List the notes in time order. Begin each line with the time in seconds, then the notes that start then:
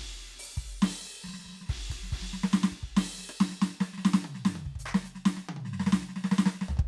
0.40 open hi-hat
0.58 kick
0.83 snare, crash
1.03 snare
1.25 kick, snare
1.29 snare
1.35 snare
1.40 snare
1.45 kick, snare
1.49 snare
1.53 snare
1.56 snare
1.62 snare
1.67 kick, snare, ride
1.91 kick, ride bell
2.04 snare
2.13 kick, ride
2.23 snare
2.34 kick, snare
2.45 snare
2.54 snare
2.73 kick
2.84 kick
2.98 snare, crash
3.14 snare
3.19 snare
3.30 cross-stick
3.41 snare
3.52 snare
3.63 snare, hi-hat pedal
3.82 snare
3.94 snare
3.99 snare
4.06 snare
4.14 snare, hi-hat pedal
4.26 high tom
4.36 snare
4.46 snare, hi-hat pedal
4.57 high tom
4.67 kick
4.76 kick, hi-hat pedal
4.87 percussion
4.96 snare
5.06 hi-hat pedal
5.16 snare
5.27 snare
5.38 snare
5.50 high tom
5.58 high tom
5.66 snare
5.74 snare
5.81 snare
5.88 snare
5.94 snare
6.03 snare
6.10 snare
6.17 snare
6.25 snare
6.33 snare
6.39 snare
6.47 snare
6.55 snare
6.62 snare
6.70 floor tom
6.78 kick, floor tom